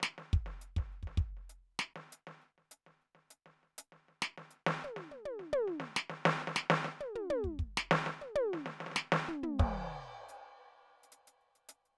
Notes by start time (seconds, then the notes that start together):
0.01 snare
0.03 snare
0.18 snare
0.33 kick
0.46 snare
0.61 closed hi-hat
0.76 kick, snare
0.92 closed hi-hat
1.02 kick
1.07 snare
1.17 kick
1.37 snare
1.49 closed hi-hat
1.79 snare
1.96 snare
2.12 closed hi-hat
2.27 snare
2.41 closed hi-hat
2.58 snare
2.71 closed hi-hat
2.86 snare
3.01 closed hi-hat
3.15 snare
3.30 closed hi-hat
3.46 snare
3.63 snare
3.78 closed hi-hat
3.92 snare
4.08 snare
4.22 snare
4.38 snare
4.50 closed hi-hat
4.66 snare
4.84 high tom
4.96 snare
5.11 high tom
5.25 high tom
5.39 snare
5.52 high tom
5.67 snare
5.80 snare
5.96 snare
6.09 snare
6.25 snare
6.42 snare
6.47 snare
6.56 snare
6.70 snare
6.84 snare
7.00 high tom
7.15 mid tom
7.29 high tom
7.44 kick
7.59 kick
7.77 snare
7.91 snare
8.06 snare
8.21 high tom
8.35 high tom
8.53 snare
8.66 snare
8.80 snare
8.86 snare
8.91 snare
8.96 snare
9.12 snare
9.28 floor tom
9.42 floor tom
9.59 kick, crash
10.28 hi-hat pedal
10.78 closed hi-hat
10.98 closed hi-hat
11.03 closed hi-hat
11.12 closed hi-hat
11.27 closed hi-hat
11.41 closed hi-hat
11.55 closed hi-hat
11.69 closed hi-hat
11.85 closed hi-hat